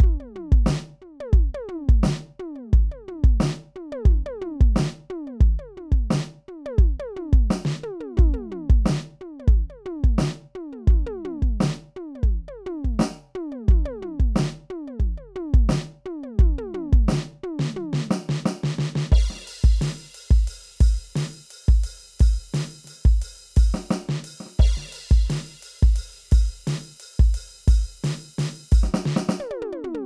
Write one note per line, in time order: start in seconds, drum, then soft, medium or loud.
0.01 kick loud
0.01 floor tom medium
0.20 high tom medium
0.36 floor tom loud
0.53 kick loud
0.67 snare loud
0.69 snare loud
1.02 floor tom medium
1.21 high tom loud
1.34 kick loud
1.55 high tom loud
1.69 floor tom loud
1.89 kick loud
2.04 snare loud
2.07 snare loud
2.40 floor tom loud
2.56 high tom medium
2.74 kick loud
2.74 floor tom soft
2.92 high tom medium
3.08 floor tom loud
3.25 kick loud
3.41 snare loud
3.43 snare loud
3.76 floor tom medium
3.92 high tom loud
4.06 kick loud
4.10 floor tom soft
4.26 high tom loud
4.42 floor tom loud
4.61 kick loud
4.77 snare loud
4.80 snare loud
5.10 floor tom loud
5.27 high tom medium
5.41 kick loud
5.59 high tom medium
5.77 floor tom medium
5.92 kick loud
6.02 kick soft
6.11 snare loud
6.14 snare loud
6.48 floor tom medium
6.66 high tom loud
6.79 kick loud
7.00 high tom loud
7.17 floor tom loud
7.34 kick loud
7.51 snare loud
7.66 snare loud
7.84 mid tom loud
8.01 mid tom loud
8.17 kick loud
8.17 floor tom loud
8.34 mid tom medium
8.52 floor tom loud
8.70 kick loud
8.87 snare loud
8.90 snare loud
9.21 floor tom medium
9.40 high tom medium
9.48 kick loud
9.70 high tom medium
9.86 floor tom loud
10.05 kick loud
10.15 kick soft
10.15 snare loud
10.21 snare loud
10.55 floor tom loud
10.73 mid tom medium
10.88 kick loud
10.88 floor tom medium
11.07 mid tom loud
11.25 floor tom loud
11.43 kick medium
11.61 snare loud
11.64 snare loud
11.96 floor tom loud
12.16 high tom medium
12.24 kick loud
12.49 high tom medium
12.66 floor tom loud
12.85 kick medium
12.95 kick soft
13.00 snare loud
13.02 snare loud
13.35 floor tom loud
13.52 high tom medium
13.69 kick loud
13.69 floor tom medium
13.86 high tom loud
14.03 floor tom loud
14.20 kick loud
14.37 snare loud
14.40 snare loud
14.70 floor tom loud
14.88 high tom medium
15.00 kick medium
15.18 high tom medium
15.36 floor tom loud
15.55 kick loud
15.70 snare loud
15.72 snare loud
16.06 floor tom loud
16.24 high tom medium
16.40 kick loud
16.40 floor tom medium
16.59 mid tom loud
16.74 floor tom loud
16.93 kick loud
17.09 snare loud
17.13 snare loud
17.44 floor tom loud
17.60 snare loud
17.76 floor tom loud
17.94 snare loud
18.12 snare loud
18.30 snare loud
18.46 snare loud
18.64 snare loud
18.79 snare loud
18.96 snare loud
19.12 kick loud
19.12 crash loud
19.31 snare soft
19.37 snare soft
19.48 open hi-hat loud
19.65 kick loud
19.82 open hi-hat loud
19.82 snare loud
20.15 open hi-hat loud
20.31 kick loud
20.48 open hi-hat loud
20.81 open hi-hat loud
20.81 kick loud
21.16 open hi-hat loud
21.16 snare loud
21.51 open hi-hat loud
21.69 kick loud
21.84 open hi-hat loud
22.20 open hi-hat loud
22.20 kick loud
22.55 open hi-hat loud
22.55 snare loud
22.85 open hi-hat loud
22.85 snare soft
23.06 kick loud
23.22 open hi-hat loud
23.57 open hi-hat loud
23.57 kick loud
23.75 snare medium
23.91 snare loud
24.10 snare loud
24.25 open hi-hat loud
24.41 snare soft
24.47 snare soft
24.60 kick loud
24.60 crash loud
24.78 snare soft
24.93 open hi-hat loud
25.12 kick loud
25.31 open hi-hat loud
25.31 snare loud
25.39 snare soft
25.63 open hi-hat loud
25.83 kick loud
25.97 open hi-hat loud
26.32 open hi-hat loud
26.32 kick loud
26.68 open hi-hat loud
26.68 snare loud
27.01 open hi-hat loud
27.20 kick loud
27.35 open hi-hat loud
27.68 open hi-hat loud
27.68 kick loud
28.05 open hi-hat loud
28.05 snare loud
28.39 open hi-hat loud
28.39 snare loud
28.72 open hi-hat loud
28.72 kick loud
28.84 snare medium
28.84 hi-hat pedal soft
28.95 snare loud
29.06 snare loud
29.11 hi-hat pedal soft
29.17 snare loud
29.30 snare loud
29.30 hi-hat pedal soft
29.40 high tom loud
29.51 high tom loud
29.62 mid tom loud
29.73 high tom loud
29.84 floor tom loud
29.95 mid tom loud